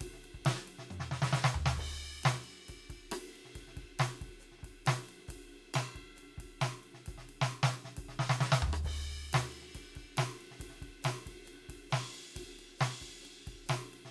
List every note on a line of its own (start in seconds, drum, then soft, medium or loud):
0.01 kick soft
0.01 hi-hat pedal medium
0.01 ride loud
0.14 snare soft
0.19 snare soft
0.25 ride medium
0.35 kick soft
0.46 snare loud
0.46 hi-hat pedal medium
0.46 ride loud
0.54 snare soft
0.68 ride medium
0.79 snare soft
0.91 hi-hat pedal medium
0.91 mid tom medium
1.01 snare medium
1.12 snare medium
1.23 snare loud
1.34 snare loud
1.34 hi-hat pedal medium
1.45 snare loud
1.55 floor tom loud
1.67 snare loud
1.77 kick soft
1.77 hi-hat pedal soft
1.77 crash loud
1.85 kick soft
1.88 kick soft
1.95 snare soft
2.24 snare loud
2.24 hi-hat pedal medium
2.24 ride medium
2.34 snare soft
2.45 ride soft
2.55 snare soft
2.62 snare soft
2.69 kick soft
2.69 hi-hat pedal medium
2.69 ride medium
2.75 snare soft
2.90 kick soft
2.90 ride medium
3.12 cross-stick medium
3.12 hi-hat pedal soft
3.12 ride loud
3.36 ride soft
3.46 snare soft
3.56 kick soft
3.56 hi-hat pedal soft
3.56 ride medium
3.68 snare soft
3.77 kick soft
3.77 ride medium
3.84 kick soft
3.99 snare loud
3.99 hi-hat pedal medium
3.99 ride loud
4.22 kick soft
4.22 ride medium
4.28 kick soft
4.40 hi-hat pedal medium
4.40 ride soft
4.52 snare soft
4.59 snare soft
4.64 kick soft
4.64 ride medium
4.70 kick soft
4.86 snare loud
4.86 hi-hat pedal medium
4.86 ride loud
5.09 ride soft
5.20 snare soft
5.29 kick soft
5.29 snare soft
5.29 hi-hat pedal medium
5.29 ride medium
5.53 ride soft
5.74 snare loud
5.74 hi-hat pedal medium
5.74 ride bell loud
5.96 kick soft
5.96 ride medium
6.17 hi-hat pedal soft
6.17 ride medium
6.23 snare soft
6.27 snare soft
6.30 snare soft
6.35 kick soft
6.35 snare soft
6.41 kick soft
6.41 ride medium
6.61 snare loud
6.61 hi-hat pedal medium
6.61 ride medium
6.84 ride soft
6.95 snare soft
7.07 kick soft
7.07 hi-hat pedal soft
7.07 ride medium
7.15 kick soft
7.15 snare soft
7.30 ride medium
7.42 snare loud
7.51 hi-hat pedal medium
7.51 ride medium
7.64 snare loud
7.75 ride medium
7.85 snare soft
7.97 kick soft
7.97 hi-hat pedal medium
7.97 ride medium
8.05 kick soft
8.09 snare soft
8.20 snare loud
8.30 snare loud
8.41 snare loud
8.41 hi-hat pedal medium
8.53 snare loud
8.62 kick soft
8.62 floor tom loud
8.74 cross-stick medium
8.84 kick medium
8.84 hi-hat pedal medium
8.84 crash loud
8.99 snare soft
9.04 snare soft
9.34 snare loud
9.34 hi-hat pedal medium
9.34 ride loud
9.53 ride soft
9.62 snare soft
9.69 snare soft
9.75 kick soft
9.75 hi-hat pedal medium
9.75 ride medium
9.80 snare soft
9.83 snare soft
9.94 kick soft
9.94 snare soft
9.94 ride medium
10.05 kick soft
10.18 snare loud
10.18 hi-hat pedal medium
10.18 ride loud
10.42 ride soft
10.52 snare soft
10.60 kick soft
10.60 hi-hat pedal medium
10.60 ride medium
10.67 kick soft
10.67 snare soft
10.75 snare soft
10.79 kick soft
10.79 snare soft
10.83 ride soft
10.89 kick soft
11.03 snare medium
11.03 hi-hat pedal medium
11.03 ride loud
11.27 kick soft
11.27 ride medium
11.46 hi-hat pedal medium
11.46 ride medium
11.54 snare soft
11.58 snare soft
11.62 snare soft
11.70 kick soft
11.70 ride medium
11.91 snare loud
11.91 hi-hat pedal medium
11.91 ride medium
12.15 ride medium
12.35 kick soft
12.35 hi-hat pedal soft
12.35 ride medium
12.42 kick soft
12.60 ride medium
12.79 snare loud
12.79 hi-hat pedal medium
12.79 ride medium
13.02 kick soft
13.02 ride medium
13.22 hi-hat pedal medium
13.22 ride medium
13.38 snare soft
13.48 kick soft
13.48 ride medium
13.67 snare medium
13.67 hi-hat pedal soft
13.67 ride loud
13.94 ride soft
14.06 snare soft